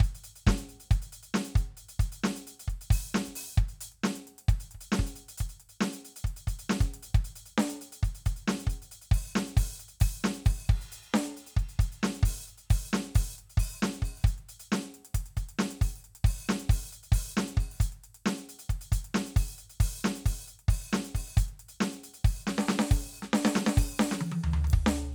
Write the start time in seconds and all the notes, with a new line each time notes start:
0.01 closed hi-hat, kick
0.16 closed hi-hat
0.25 closed hi-hat
0.36 closed hi-hat
0.47 kick, snare
0.58 closed hi-hat
0.70 closed hi-hat
0.81 closed hi-hat
0.92 closed hi-hat, kick
1.03 closed hi-hat
1.13 closed hi-hat
1.24 closed hi-hat
1.35 snare
1.45 closed hi-hat
1.56 closed hi-hat, kick
1.78 closed hi-hat
1.89 closed hi-hat
2.00 closed hi-hat, kick
2.13 closed hi-hat
2.25 snare
2.37 closed hi-hat
2.48 closed hi-hat
2.60 closed hi-hat
2.69 kick, closed hi-hat
2.82 closed hi-hat
2.91 open hi-hat, kick
3.05 open hi-hat
3.11 hi-hat pedal
3.15 snare
3.26 closed hi-hat, kick
3.36 open hi-hat
3.49 open hi-hat
3.55 kick, hi-hat pedal
3.59 closed hi-hat
3.69 closed hi-hat
3.81 closed hi-hat
3.93 closed hi-hat
4.04 snare
4.16 closed hi-hat
4.28 closed hi-hat
4.39 closed hi-hat
4.49 kick, closed hi-hat
4.61 closed hi-hat
4.72 kick, closed hi-hat
4.82 closed hi-hat
4.93 snare
5.00 kick
5.07 closed hi-hat
5.16 closed hi-hat
5.29 closed hi-hat
5.38 closed hi-hat, kick
5.50 closed hi-hat
5.61 closed hi-hat
5.70 closed hi-hat
5.82 snare
5.94 closed hi-hat
6.06 closed hi-hat
6.17 closed hi-hat
6.25 kick, closed hi-hat
6.37 closed hi-hat
6.48 closed hi-hat, kick
6.60 closed hi-hat
6.70 snare
6.81 closed hi-hat, kick
6.95 closed hi-hat
7.04 closed hi-hat
7.15 kick, closed hi-hat
7.25 closed hi-hat
7.36 closed hi-hat
7.59 snare
7.70 closed hi-hat
7.82 closed hi-hat
7.93 closed hi-hat
8.04 closed hi-hat, kick
8.16 closed hi-hat
8.27 closed hi-hat, kick
8.37 closed hi-hat
8.49 snare
8.60 closed hi-hat
8.68 kick
8.83 closed hi-hat
8.92 closed hi-hat
9.12 open hi-hat, kick
9.28 hi-hat pedal, open hi-hat
9.36 snare
9.48 closed hi-hat
9.58 open hi-hat, kick
9.71 open hi-hat
9.77 closed hi-hat, hi-hat pedal
9.89 closed hi-hat
10.01 open hi-hat, kick
10.12 open hi-hat
10.21 snare, hi-hat pedal
10.35 closed hi-hat
10.46 open hi-hat, kick
10.59 open hi-hat
10.67 kick, hi-hat pedal
10.71 crash
10.82 closed hi-hat
10.93 closed hi-hat
11.04 closed hi-hat
11.15 snare
11.25 closed hi-hat
11.37 closed hi-hat
11.47 closed hi-hat
11.57 kick, closed hi-hat
11.70 closed hi-hat
11.80 closed hi-hat, kick
11.93 closed hi-hat
12.04 snare
12.15 closed hi-hat
12.24 open hi-hat, kick
12.39 open hi-hat
12.44 closed hi-hat, hi-hat pedal
12.58 closed hi-hat
12.71 open hi-hat, kick
12.82 open hi-hat
12.89 hi-hat pedal
12.94 snare
13.05 closed hi-hat
13.16 open hi-hat, kick
13.30 hi-hat pedal, open hi-hat
13.39 closed hi-hat
13.51 closed hi-hat
13.58 open hi-hat, kick
13.72 open hi-hat
13.78 hi-hat pedal
13.83 snare
13.94 closed hi-hat
14.03 open hi-hat, kick
14.18 open hi-hat
14.23 kick, hi-hat pedal
14.27 closed hi-hat
14.39 closed hi-hat
14.50 closed hi-hat
14.60 closed hi-hat
14.73 snare
14.84 closed hi-hat
14.95 closed hi-hat
15.06 closed hi-hat
15.15 kick, closed hi-hat
15.27 closed hi-hat
15.38 closed hi-hat, kick
15.50 closed hi-hat
15.60 snare
15.71 closed hi-hat
15.82 open hi-hat, kick
15.97 hi-hat pedal, open hi-hat
16.05 closed hi-hat
16.16 closed hi-hat
16.25 open hi-hat, kick
16.40 open hi-hat
16.46 snare, hi-hat pedal
16.60 closed hi-hat
16.70 open hi-hat, kick
16.84 open hi-hat
16.89 hi-hat pedal
16.93 closed hi-hat
17.04 closed hi-hat
17.13 open hi-hat, kick
17.26 open hi-hat
17.32 hi-hat pedal
17.38 snare
17.49 closed hi-hat
17.58 open hi-hat, kick
17.72 open hi-hat
17.78 closed hi-hat, kick, hi-hat pedal
17.93 closed hi-hat
18.05 closed hi-hat
18.15 closed hi-hat
18.27 snare
18.39 closed hi-hat
18.50 closed hi-hat
18.70 kick, closed hi-hat
18.82 closed hi-hat
18.93 closed hi-hat, kick
19.05 closed hi-hat
19.15 snare
19.27 closed hi-hat
19.37 open hi-hat, kick
19.49 open hi-hat
19.56 closed hi-hat, hi-hat pedal
19.70 closed hi-hat
19.81 open hi-hat, kick
19.93 open hi-hat
20.01 snare, hi-hat pedal
20.16 closed hi-hat
20.26 open hi-hat, kick
20.40 open hi-hat
20.44 hi-hat pedal
20.48 closed hi-hat
20.60 closed hi-hat
20.69 open hi-hat, kick
20.82 open hi-hat
20.90 snare, hi-hat pedal
21.05 closed hi-hat
21.16 open hi-hat, kick
21.28 open hi-hat
21.35 closed hi-hat, kick, hi-hat pedal
21.49 closed hi-hat
21.60 closed hi-hat
21.69 closed hi-hat
21.81 snare
21.93 closed hi-hat
22.04 closed hi-hat
22.25 open hi-hat, kick
22.42 hi-hat pedal
22.48 snare
22.59 snare
22.69 snare
22.80 snare
22.92 open hi-hat, kick
23.02 open hi-hat
23.13 open hi-hat
23.18 hi-hat pedal
23.23 snare
23.34 snare
23.46 snare
23.56 snare
23.67 snare
23.78 open hi-hat, kick
24.00 snare
24.12 snare
24.19 kick, high tom
24.32 high tom
24.45 floor tom
24.54 floor tom
24.65 floor tom, ride
24.71 kick, ride
24.87 snare